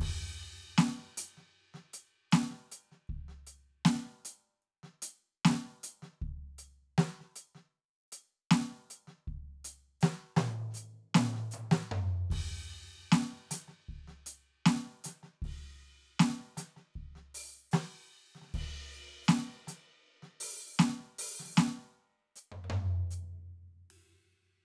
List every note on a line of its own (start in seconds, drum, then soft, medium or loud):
0.01 kick medium
0.01 crash medium
0.23 snare soft
0.40 open hi-hat soft
0.79 snare loud
1.00 snare soft
1.18 closed hi-hat loud
1.38 snare soft
1.75 snare soft
1.94 closed hi-hat medium
2.33 snare loud
2.33 hi-hat pedal medium
2.51 snare soft
2.73 closed hi-hat medium
2.92 snare soft
3.08 kick medium
3.08 closed hi-hat soft
3.29 snare soft
3.48 closed hi-hat medium
3.86 snare loud
4.26 closed hi-hat medium
4.63 closed hi-hat soft
4.84 snare soft
5.03 closed hi-hat loud
5.46 snare loud
5.51 snare medium
5.84 closed hi-hat loud
6.03 snare soft
6.23 kick medium
6.59 closed hi-hat medium
6.99 snare loud
7.21 snare soft
7.37 closed hi-hat medium
7.56 snare soft
8.13 closed hi-hat medium
8.52 snare loud
8.76 snare soft
8.91 closed hi-hat medium
9.08 snare soft
9.28 kick medium
9.28 closed hi-hat soft
9.66 open hi-hat medium
10.02 snare loud
10.02 hi-hat pedal medium
10.37 snare loud
10.37 mid tom loud
10.72 snare soft
10.72 hi-hat pedal medium
10.78 closed hi-hat medium
11.16 snare loud
11.16 mid tom loud
11.36 snare soft
11.52 hi-hat pedal medium
11.52 mid tom medium
11.72 snare loud
11.92 floor tom loud
12.31 kick medium
12.31 crash medium
12.70 closed hi-hat soft
13.13 snare loud
13.52 closed hi-hat loud
13.52 snare medium
13.69 snare soft
13.90 kick soft
14.09 snare soft
14.27 closed hi-hat medium
14.67 snare loud
15.05 closed hi-hat medium
15.05 snare soft
15.24 snare soft
15.43 kick medium
15.43 crash soft
15.81 closed hi-hat soft
16.21 snare loud
16.58 closed hi-hat medium
16.58 snare medium
16.77 snare soft
16.95 kick soft
16.95 closed hi-hat soft
17.16 snare soft
17.35 open hi-hat loud
17.72 snare loud
17.72 hi-hat pedal medium
17.72 crash medium
18.36 snare soft
18.42 snare soft
18.47 snare soft
18.52 kick medium
18.52 snare soft
18.52 ride medium
18.56 snare soft
18.92 open hi-hat soft
19.25 hi-hat pedal soft
19.29 snare loud
19.68 closed hi-hat medium
19.68 snare soft
20.23 snare soft
20.30 snare soft
20.41 open hi-hat loud
20.80 snare loud
20.80 hi-hat pedal medium
21.01 snare soft
21.20 open hi-hat loud
21.40 snare soft
21.46 snare soft
21.51 snare soft
21.55 snare soft
21.55 hi-hat pedal medium
21.58 snare loud
22.37 hi-hat pedal medium
22.53 floor tom medium
22.65 floor tom soft
22.71 floor tom loud
23.12 hi-hat pedal medium
23.91 crash soft